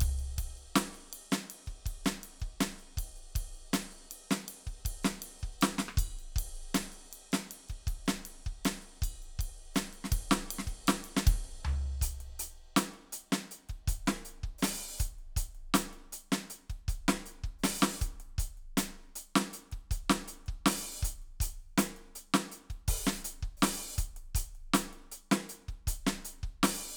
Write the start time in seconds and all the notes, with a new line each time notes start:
0.01 kick, ride
0.19 ride
0.38 kick, ride
0.57 ride
0.76 snare, ride
0.95 ride
1.13 ride
1.32 snare, ride
1.50 ride
1.67 kick, ride
1.86 kick, ride
2.05 snare, ride
2.24 ride
2.40 kick, ride
2.61 snare, ride
2.80 ride
2.98 kick, ride
3.17 ride
3.36 kick, ride
3.55 ride
3.73 snare, ride
3.92 ride
4.10 hi-hat pedal, ride
4.31 snare, ride
4.48 ride
4.67 kick, ride
4.85 kick, ride
5.04 snare, ride
5.22 ride
5.40 kick, ride
5.62 snare, ride bell
5.79 snare
5.89 cross-stick
5.98 kick, ride bell
6.19 ride
6.36 kick, ride
6.55 ride
6.75 snare, ride
6.92 ride
7.11 hi-hat pedal, ride
7.33 snare, ride
7.51 ride
7.69 kick, ride
7.87 kick, ride
8.06 snare, ride
8.25 ride
8.45 kick, ride
8.65 snare, ride
8.82 ride
9.02 kick, ride bell
9.22 ride
9.39 kick, ride
9.61 ride
9.75 snare, hi-hat pedal, ride
9.93 ride
10.04 snare
10.12 kick, ride
10.31 snare
10.51 ride
10.59 snare
10.67 kick, ride
10.88 snare, ride
11.04 ride
11.17 snare
11.27 kick, ride
11.65 floor tom
12.02 closed hi-hat, kick
12.20 closed hi-hat
12.40 closed hi-hat
12.77 closed hi-hat, snare
12.94 closed hi-hat
13.13 closed hi-hat
13.32 snare, closed hi-hat
13.51 closed hi-hat
13.69 kick, closed hi-hat
13.88 closed hi-hat, kick
14.07 snare, closed hi-hat
14.25 closed hi-hat
14.44 kick
14.59 hi-hat pedal
14.63 open hi-hat, snare
14.98 closed hi-hat, kick, hi-hat pedal
15.19 closed hi-hat
15.37 closed hi-hat, kick
15.55 closed hi-hat
15.74 closed hi-hat, snare
15.93 closed hi-hat
16.13 closed hi-hat
16.32 snare, closed hi-hat
16.50 closed hi-hat
16.70 kick, closed hi-hat
16.88 closed hi-hat, kick
17.08 snare
17.26 closed hi-hat
17.44 kick, closed hi-hat
17.59 hi-hat pedal
17.64 open hi-hat, snare
17.82 snare
17.99 closed hi-hat, kick, hi-hat pedal
18.20 closed hi-hat
18.38 closed hi-hat, kick
18.57 closed hi-hat
18.77 closed hi-hat, snare
19.16 closed hi-hat
19.36 snare, closed hi-hat
19.40 snare
19.53 closed hi-hat
19.72 kick, closed hi-hat
19.91 closed hi-hat, kick
20.10 snare
20.28 closed hi-hat
20.46 kick, closed hi-hat
20.66 open hi-hat, snare
21.01 closed hi-hat, kick, hi-hat pedal
21.22 closed hi-hat
21.40 closed hi-hat, kick
21.60 closed hi-hat
21.78 closed hi-hat, snare
21.97 closed hi-hat
22.16 closed hi-hat
22.34 snare, closed hi-hat
22.52 closed hi-hat
22.70 kick, closed hi-hat
22.88 open hi-hat, kick
23.07 snare
23.17 hi-hat pedal
23.25 closed hi-hat
23.43 kick
23.57 hi-hat pedal
23.62 open hi-hat, snare
23.95 closed hi-hat, kick, hi-hat pedal
24.17 closed hi-hat
24.35 closed hi-hat, kick
24.55 closed hi-hat
24.74 closed hi-hat, snare
24.93 closed hi-hat
25.12 closed hi-hat
25.32 snare
25.49 closed hi-hat
25.69 kick, closed hi-hat
25.87 closed hi-hat, kick
26.07 snare
26.25 closed hi-hat
26.43 kick, closed hi-hat
26.63 open hi-hat, snare